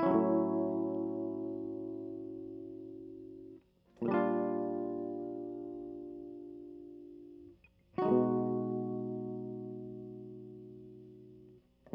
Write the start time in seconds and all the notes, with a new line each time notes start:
0.00 C#4 E4
0.07 F#3
0.16 A2
4.04 A#2 D3
4.09 G3 D4
4.15 F4
7.99 D#4 F#4
8.06 G#3
8.11 B2 D3